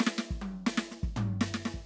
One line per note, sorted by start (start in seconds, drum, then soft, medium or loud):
0.00 snare loud
0.07 snare loud
0.18 snare loud
0.31 kick medium
0.42 high tom loud
0.66 snare loud
0.77 snare loud
0.91 snare medium
1.03 kick medium
1.16 floor tom loud
1.16 high tom loud
1.41 snare loud
1.54 snare medium
1.65 snare medium
1.74 kick soft